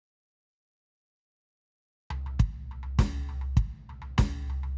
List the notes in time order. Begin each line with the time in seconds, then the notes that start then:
2.10 floor tom
2.26 floor tom
2.39 kick, floor tom
2.71 floor tom
2.83 floor tom
2.99 kick, snare, floor tom
3.29 floor tom
3.41 floor tom
3.57 kick, floor tom
3.89 floor tom
4.02 floor tom
4.18 kick, snare, floor tom
4.50 floor tom
4.63 floor tom